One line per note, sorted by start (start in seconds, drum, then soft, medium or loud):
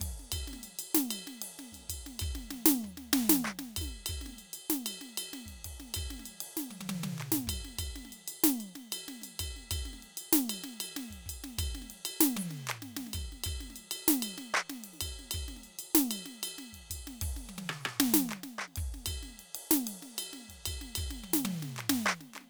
0.01 kick soft
0.01 hi-hat pedal medium
0.01 ride loud
0.09 kick soft
0.11 kick soft
0.20 snare soft
0.32 kick soft
0.32 ride bell loud
0.39 kick soft
0.48 snare soft
0.53 snare soft
0.59 snare soft
0.63 snare soft
0.63 ride bell medium
0.79 ride bell loud
0.95 snare loud
1.11 ride bell loud
1.27 snare soft
1.42 hi-hat pedal medium
1.42 ride loud
1.59 snare soft
1.72 kick soft
1.72 snare soft
1.72 ride bell soft
1.79 snare soft
1.90 kick soft
1.90 hi-hat pedal soft
1.90 ride bell loud
2.07 snare soft
2.20 kick soft
2.20 ride bell loud
2.28 kick soft
2.35 snare soft
2.51 snare medium
2.66 snare loud
2.75 snare soft
2.84 floor tom soft
2.84 hi-hat pedal soft
2.98 snare soft
3.12 snare loud
3.12 hi-hat pedal soft
3.30 snare loud
3.36 snare soft
3.45 percussion medium
3.45 hi-hat pedal medium
3.59 snare medium
3.77 kick soft
3.77 ride bell loud
3.82 snare soft
4.06 kick soft
4.06 ride bell loud
4.21 snare soft
4.26 snare soft
4.30 snare soft
4.39 ride bell soft
4.54 ride bell medium
4.70 snare medium
4.86 ride bell loud
5.01 snare soft
5.18 hi-hat pedal medium
5.18 ride bell loud
5.33 snare soft
5.45 kick soft
5.45 snare soft
5.45 ride medium
5.65 kick soft
5.65 ride loud
5.80 snare soft
5.94 kick soft
5.94 ride bell loud
6.02 kick soft
6.11 snare soft
6.20 snare soft
6.26 ride bell medium
6.41 ride loud
6.57 snare medium
6.71 hi-hat pedal soft
6.71 high tom soft
6.81 high tom medium
6.89 hi-hat pedal soft
6.89 open hi-hat soft
6.89 high tom loud
7.04 high tom medium
7.18 percussion medium
7.32 snare medium
7.48 kick soft
7.48 ride bell loud
7.65 snare soft
7.79 kick soft
7.79 ride bell loud
7.85 kick soft
7.96 snare soft
8.05 snare soft
8.12 ride bell soft
8.28 ride bell medium
8.44 snare loud
8.48 hi-hat pedal medium
8.60 ride bell medium
8.76 snare soft
8.92 hi-hat pedal medium
8.92 ride bell loud
9.08 snare soft
9.22 snare soft
9.22 ride bell medium
9.40 kick soft
9.40 hi-hat pedal soft
9.40 ride bell loud
9.57 snare soft
9.71 kick soft
9.71 ride bell loud
9.80 kick soft
9.86 snare soft
9.93 snare soft
10.00 snare soft
10.00 ride soft
10.17 ride bell medium
10.33 snare loud
10.50 ride bell loud
10.64 snare medium
10.81 hi-hat pedal medium
10.81 ride bell loud
10.97 snare medium
11.10 kick soft
11.10 ride medium
11.26 kick soft
11.26 hi-hat pedal soft
11.26 ride bell medium
11.44 snare soft
11.59 kick soft
11.59 ride bell loud
11.65 kick soft
11.75 snare soft
11.82 snare soft
11.90 ride medium
12.05 ride bell loud
12.21 snare loud
12.37 hi-hat pedal loud
12.37 high tom loud
12.51 snare soft
12.67 percussion loud
12.82 snare soft
12.97 snare medium
13.14 kick soft
13.14 ride bell loud
13.22 kick soft
13.24 kick soft
13.32 snare soft
13.44 kick soft
13.44 ride bell loud
13.52 kick soft
13.61 snare soft
13.70 snare soft
13.76 ride bell medium
13.91 ride bell loud
14.08 snare loud
14.21 hi-hat pedal soft
14.21 ride bell loud
14.38 snare soft
14.54 percussion loud
14.70 snare medium
14.84 ride medium
14.94 snare soft
15.01 kick soft
15.01 ride bell loud
15.19 snare soft
15.31 kick soft
15.31 ride bell loud
15.48 snare soft
15.57 snare soft
15.64 ride bell soft
15.79 ride bell medium
15.95 snare loud
16.11 ride bell loud
16.26 snare soft
16.43 hi-hat pedal medium
16.43 ride bell loud
16.59 snare soft
16.73 kick soft
16.73 ride medium
16.91 kick soft
16.91 ride bell medium
17.07 snare soft
17.22 kick soft
17.22 hi-hat pedal medium
17.22 ride loud
17.29 kick soft
17.37 snare soft
17.49 high tom medium
17.58 high tom medium
17.70 cross-stick medium
17.81 hi-hat pedal soft
17.86 cross-stick loud
18.00 snare loud
18.14 snare loud
18.14 hi-hat pedal soft
18.29 percussion medium
18.44 snare soft
18.59 percussion medium
18.68 snare soft
18.76 kick soft
18.76 hi-hat pedal medium
18.76 ride loud
18.87 kick soft
18.88 kick soft
18.94 snare soft
19.06 kick soft
19.06 ride bell loud
19.23 snare soft
19.29 snare soft
19.40 ride medium
19.55 ride loud
19.71 snare loud
19.87 ride loud
20.03 snare soft
20.18 hi-hat pedal medium
20.18 ride bell loud
20.33 snare soft
20.41 snare soft
20.49 kick soft
20.49 ride medium
20.66 kick soft
20.66 ride bell loud
20.82 snare soft
20.96 kick soft
20.96 ride bell loud
21.04 kick soft
21.11 snare soft
21.24 high tom medium
21.34 snare medium
21.45 high tom loud
21.63 snare soft
21.76 percussion medium
21.90 snare loud
22.00 hi-hat pedal soft
22.06 percussion loud
22.21 snare soft
22.34 snare soft
22.34 percussion medium
22.41 snare soft